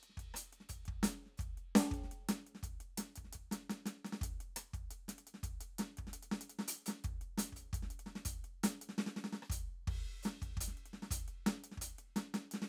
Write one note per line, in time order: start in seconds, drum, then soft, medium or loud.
0.03 closed hi-hat soft
0.10 snare soft
0.18 kick soft
0.18 closed hi-hat soft
0.34 closed hi-hat loud
0.34 cross-stick medium
0.53 closed hi-hat soft
0.61 snare soft
0.69 closed hi-hat medium
0.69 kick soft
0.86 kick soft
0.86 closed hi-hat soft
1.03 open hi-hat loud
1.03 cross-stick soft
1.03 snare medium
1.26 snare soft
1.32 snare soft
1.38 kick soft
1.38 closed hi-hat soft
1.38 hi-hat pedal soft
1.58 closed hi-hat soft
1.76 closed hi-hat loud
1.76 snare medium
1.92 kick medium
1.92 closed hi-hat soft
2.04 snare soft
2.12 closed hi-hat soft
2.29 snare medium
2.29 closed hi-hat loud
2.47 closed hi-hat soft
2.55 snare soft
2.63 kick soft
2.63 closed hi-hat medium
2.81 closed hi-hat soft
2.98 snare soft
2.98 closed hi-hat loud
3.16 kick soft
3.16 closed hi-hat medium
3.25 snare soft
3.33 kick soft
3.33 closed hi-hat medium
3.52 snare soft
3.52 closed hi-hat medium
3.70 snare soft
3.70 closed hi-hat medium
3.86 snare soft
3.86 closed hi-hat medium
4.05 snare soft
4.05 closed hi-hat soft
4.13 snare soft
4.22 kick medium
4.22 closed hi-hat medium
4.41 closed hi-hat soft
4.57 cross-stick medium
4.57 closed hi-hat loud
4.74 kick soft
4.74 closed hi-hat soft
4.91 closed hi-hat medium
5.09 snare soft
5.09 closed hi-hat medium
5.19 closed hi-hat soft
5.27 closed hi-hat medium
5.34 snare soft
5.44 kick soft
5.44 closed hi-hat medium
5.61 closed hi-hat medium
5.79 snare medium
5.79 closed hi-hat medium
5.98 kick soft
5.98 closed hi-hat soft
6.07 snare soft
6.14 closed hi-hat medium
6.23 closed hi-hat medium
6.32 snare medium
6.41 closed hi-hat medium
6.50 closed hi-hat medium
6.59 snare soft
6.68 closed hi-hat loud
6.86 closed hi-hat medium
6.86 snare soft
7.04 kick medium
7.04 closed hi-hat medium
7.22 closed hi-hat soft
7.38 closed hi-hat loud
7.38 snare medium
7.53 closed hi-hat medium
7.53 kick soft
7.73 kick medium
7.73 closed hi-hat medium
7.83 snare soft
7.91 closed hi-hat medium
8.00 closed hi-hat soft
8.07 snare soft
8.16 snare soft
8.26 closed hi-hat loud
8.26 kick soft
8.45 closed hi-hat soft
8.64 closed hi-hat loud
8.64 snare medium
8.82 closed hi-hat medium
8.89 snare soft
8.98 snare medium
9.07 snare soft
9.17 snare soft
9.24 snare soft
9.33 snare soft
9.43 cross-stick medium
9.50 closed hi-hat medium
9.50 kick medium
9.88 kick medium
9.88 crash soft
10.23 closed hi-hat medium
10.23 snare medium
10.23 hi-hat pedal medium
10.42 kick soft
10.42 closed hi-hat soft
10.57 closed hi-hat loud
10.57 kick medium
10.68 snare soft
10.78 closed hi-hat soft
10.86 closed hi-hat soft
10.94 snare soft
11.03 snare soft
11.11 closed hi-hat loud
11.11 kick medium
11.28 closed hi-hat soft
11.47 snare medium
11.47 closed hi-hat medium
11.64 closed hi-hat medium
11.72 snare soft
11.78 closed hi-hat loud
11.78 kick soft
11.99 closed hi-hat soft
12.16 snare medium
12.16 closed hi-hat medium
12.34 snare medium
12.34 closed hi-hat medium
12.52 snare soft
12.52 closed hi-hat medium
12.62 snare soft